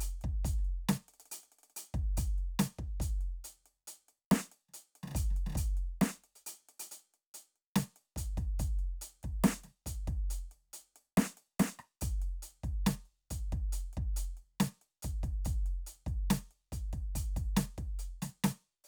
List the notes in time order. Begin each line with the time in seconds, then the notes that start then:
0.01 closed hi-hat
0.22 kick, closed hi-hat
0.45 closed hi-hat, kick
0.59 snare
0.65 closed hi-hat
0.89 closed hi-hat, snare
1.09 closed hi-hat
1.14 closed hi-hat
1.20 closed hi-hat
1.26 closed hi-hat
1.32 closed hi-hat
1.44 closed hi-hat
1.52 closed hi-hat
1.59 closed hi-hat
1.64 closed hi-hat
1.70 closed hi-hat
1.77 closed hi-hat
1.94 kick, closed hi-hat
2.17 closed hi-hat, kick
2.38 closed hi-hat
2.59 closed hi-hat, snare
2.79 kick, closed hi-hat
3.00 closed hi-hat, kick
3.21 closed hi-hat
3.45 closed hi-hat
3.66 closed hi-hat
3.88 closed hi-hat
4.09 closed hi-hat
4.32 closed hi-hat, snare
4.52 closed hi-hat
4.69 snare
4.74 closed hi-hat
4.96 closed hi-hat
5.03 snare
5.08 snare
5.11 snare
5.15 closed hi-hat, kick, snare
5.31 snare
5.37 closed hi-hat
5.47 snare
5.50 snare
5.53 snare
5.55 closed hi-hat, kick, snare
5.77 closed hi-hat
6.02 closed hi-hat, snare
6.24 closed hi-hat
6.36 closed hi-hat
6.47 closed hi-hat
6.69 closed hi-hat
6.80 closed hi-hat
6.92 closed hi-hat
7.14 closed hi-hat
7.34 closed hi-hat
7.56 closed hi-hat
7.76 closed hi-hat, snare
7.96 closed hi-hat
8.16 closed hi-hat, kick
8.37 kick, snare, closed hi-hat
8.60 closed hi-hat, kick
8.79 closed hi-hat
9.02 closed hi-hat
9.23 kick, closed hi-hat
9.44 closed hi-hat, snare
9.64 snare, closed hi-hat
9.86 closed hi-hat, kick
10.08 kick, closed hi-hat
10.31 closed hi-hat
10.52 closed hi-hat
10.73 closed hi-hat
10.96 closed hi-hat
11.18 closed hi-hat, snare
11.37 closed hi-hat
11.60 closed hi-hat, snare
11.79 cross-stick, closed hi-hat
12.01 closed hi-hat, kick
12.22 closed hi-hat
12.43 closed hi-hat
12.64 kick, closed hi-hat
12.87 closed hi-hat, snare
13.06 closed hi-hat
13.31 closed hi-hat, kick
13.53 kick, closed hi-hat
13.73 closed hi-hat
13.93 closed hi-hat
13.97 kick
14.17 closed hi-hat
14.37 closed hi-hat
14.60 closed hi-hat, snare
14.82 closed hi-hat
15.03 closed hi-hat, kick
15.24 kick, closed hi-hat
15.45 closed hi-hat, kick
15.66 closed hi-hat
15.87 closed hi-hat
16.07 kick, closed hi-hat
16.30 closed hi-hat, snare
16.51 closed hi-hat
16.72 closed hi-hat, kick
16.93 kick, closed hi-hat
17.16 closed hi-hat, kick
17.37 kick, closed hi-hat
17.57 closed hi-hat, snare
17.78 kick, closed hi-hat
17.99 closed hi-hat
18.22 closed hi-hat, snare
18.44 closed hi-hat, snare
18.84 hi-hat pedal